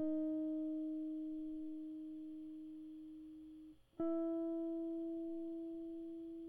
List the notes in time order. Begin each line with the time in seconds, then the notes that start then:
0.00 D#4
4.00 E4